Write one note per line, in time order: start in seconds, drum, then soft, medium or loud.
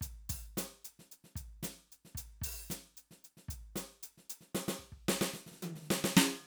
0.01 kick soft
0.01 closed hi-hat loud
0.29 kick soft
0.29 open hi-hat loud
0.57 snare medium
0.57 hi-hat pedal soft
0.57 open hi-hat loud
0.84 closed hi-hat loud
0.99 snare soft
1.11 closed hi-hat medium
1.24 snare soft
1.36 kick soft
1.36 closed hi-hat medium
1.63 snare medium
1.63 closed hi-hat loud
1.92 closed hi-hat medium
2.05 snare soft
2.15 kick soft
2.15 closed hi-hat loud
2.42 kick soft
2.42 open hi-hat loud
2.70 snare medium
2.70 closed hi-hat loud
2.70 hi-hat pedal medium
2.97 closed hi-hat medium
3.11 snare soft
3.24 closed hi-hat medium
3.37 snare soft
3.49 kick soft
3.49 closed hi-hat loud
3.76 snare medium
3.76 closed hi-hat loud
4.03 closed hi-hat loud
4.18 snare soft
4.30 closed hi-hat loud
4.41 snare soft
4.55 snare loud
4.68 snare loud
4.79 kick soft
4.92 kick soft
5.08 snare loud
5.21 snare loud
5.34 snare medium
5.46 snare soft
5.52 snare soft
5.56 snare soft
5.61 snare soft
5.61 high tom loud
5.75 snare soft
5.79 snare soft
5.83 snare soft
5.87 snare soft
5.90 snare loud
6.04 snare loud
6.17 snare loud